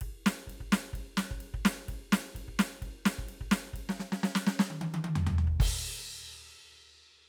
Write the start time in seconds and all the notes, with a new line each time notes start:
0.02 kick, ride
0.26 snare, ride
0.47 kick, ride
0.60 kick
0.72 snare, ride
0.93 kick, ride
1.17 snare, ride
1.31 kick
1.40 ride
1.54 kick
1.65 snare, ride
1.88 kick, ride
2.12 snare, ride
2.35 kick, ride
2.48 kick
2.59 snare, ride
2.82 kick, ride
3.05 snare, ride
3.18 kick
3.29 ride
3.41 kick
3.51 snare, ride
3.66 snare
3.73 kick, ride
3.89 snare
4.00 snare
4.12 snare
4.23 snare
4.35 snare
4.47 snare
4.59 snare
4.70 high tom
4.81 high tom
4.94 high tom
5.04 high tom
5.15 floor tom
5.27 floor tom
5.38 floor tom
5.47 kick
5.60 kick, crash